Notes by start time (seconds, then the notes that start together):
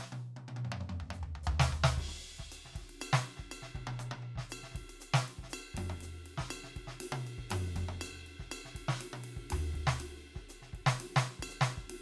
0.01 snare
0.13 high tom
0.37 high tom
0.49 high tom
0.57 high tom
0.65 mid tom
0.73 mid tom
0.81 mid tom
0.90 mid tom
1.01 floor tom
1.11 hi-hat pedal, mid tom
1.24 floor tom
1.36 floor tom
1.44 kick, hi-hat pedal, floor tom
1.60 snare
1.71 kick, hi-hat pedal, floor tom
1.84 snare
1.98 kick, ride
2.09 kick, cross-stick
2.11 kick
2.16 snare
2.21 hi-hat pedal
2.39 kick, snare
2.47 kick
2.52 hi-hat pedal, ride bell
2.66 snare
2.74 kick, snare, ride
2.78 snare
2.81 kick, snare
2.90 ride
3.01 hi-hat pedal, ride bell
3.14 snare
3.27 ride
3.37 kick, snare
3.52 hi-hat pedal, ride bell
3.63 snare
3.75 kick, high tom
3.81 kick
3.88 high tom
4.00 hi-hat pedal, high tom
4.12 high tom
4.23 high tom
4.36 kick, snare
4.47 kick, hi-hat pedal
4.53 ride bell
4.64 snare
4.72 kick, snare
4.77 snare, ride
4.81 kick, snare
4.85 snare
4.90 ride bell
5.01 hi-hat pedal, ride bell
5.14 snare
5.29 ride
5.39 kick
5.44 kick, snare
5.50 hi-hat pedal, ride bell
5.75 kick, mid tom, ride
5.90 mid tom
6.01 hi-hat pedal, ride
6.25 hi-hat pedal, ride
6.38 kick, snare
6.51 hi-hat pedal, ride bell
6.64 snare
6.77 kick, ride
6.88 snare
7.01 hi-hat pedal, ride
7.13 high tom
7.27 ride bell
7.39 kick
7.48 kick, hi-hat pedal, ride
7.52 mid tom
7.76 kick, mid tom, ride bell
7.82 kick
7.89 mid tom
8.02 hi-hat pedal, ride bell
8.27 ride
8.40 kick, snare
8.52 hi-hat pedal, ride bell
8.66 snare
8.76 kick, ride
8.89 snare
9.01 hi-hat pedal, ride
9.14 high tom
9.24 ride
9.37 kick
9.43 kick
9.51 floor tom, hi-hat pedal, ride
9.75 kick, ride
9.81 kick
9.88 snare
9.99 hi-hat pedal, ride
10.26 ride
10.36 kick, snare
10.49 hi-hat pedal, ride bell
10.63 snare
10.74 kick, ride
10.79 kick
10.87 snare
10.99 hi-hat pedal, ride
11.17 snare
11.23 snare
11.40 kick, ride bell
11.50 hi-hat pedal
11.62 snare
11.69 snare
11.78 kick
11.84 kick
11.90 ride